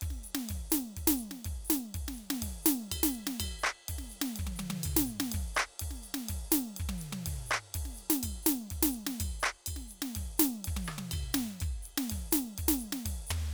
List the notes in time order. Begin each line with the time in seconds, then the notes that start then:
0.01 kick, ride
0.09 kick, snare
0.23 hi-hat pedal, ride
0.34 snare
0.49 kick, ride
0.56 kick
0.70 snare, hi-hat pedal
0.97 kick, ride
1.07 snare
1.17 hi-hat pedal, ride
1.31 snare
1.44 kick, ride
1.51 kick
1.64 hi-hat pedal
1.70 snare
1.94 kick, ride
2.00 kick
2.08 snare
2.13 hi-hat pedal
2.18 ride
2.30 snare
2.42 kick, ride
2.62 snare, hi-hat pedal
2.91 kick, ride bell
3.03 snare
3.11 hi-hat pedal
3.15 ride
3.27 snare
3.40 kick, ride bell
3.46 kick
3.59 hi-hat pedal
3.63 percussion
3.88 kick, ride
3.95 kick, snare
4.09 hi-hat pedal, ride
4.21 snare
4.36 kick, ride
4.45 kick, high tom
4.56 hi-hat pedal, high tom
4.70 high tom
4.83 kick, ride bell
4.91 kick
4.96 snare
5.05 hi-hat pedal, ride
5.20 snare
5.32 kick, ride
5.41 kick
5.54 percussion, hi-hat pedal
5.79 kick, ride
5.91 snare
6.03 hi-hat pedal, ride
6.14 snare
6.28 kick, ride
6.36 kick
6.51 snare, hi-hat pedal
6.76 kick, ride
6.86 kick, high tom
6.98 hi-hat pedal, ride
7.12 high tom
7.26 kick, ride
7.33 kick
7.46 hi-hat pedal
7.51 percussion
7.74 kick, ride
7.81 kick
7.85 snare
7.94 hi-hat pedal
7.98 ride
8.10 snare
8.23 kick, ride bell
8.42 snare, hi-hat pedal
8.70 kick, ride
8.82 snare
8.90 hi-hat pedal
8.94 ride
9.06 snare
9.20 kick, ride bell
9.27 kick
9.40 percussion, hi-hat pedal
9.66 kick, ride bell
9.76 snare
9.88 hi-hat pedal, ride
10.02 snare
10.15 kick, ride
10.22 kick
10.38 snare, hi-hat pedal
10.64 kick, ride
10.74 kick, high tom
10.84 cross-stick, hi-hat pedal
10.98 high tom
11.11 kick, ride bell
11.20 kick
11.33 snare, hi-hat pedal
11.60 kick, ride bell
11.69 kick
11.82 hi-hat pedal, ride
11.97 snare
12.09 kick, ride
12.17 kick
12.31 snare, hi-hat pedal
12.58 kick, ride
12.65 kick, snare
12.78 hi-hat pedal, ride
12.92 snare
13.05 kick, ride
13.12 kick
13.27 floor tom, hi-hat pedal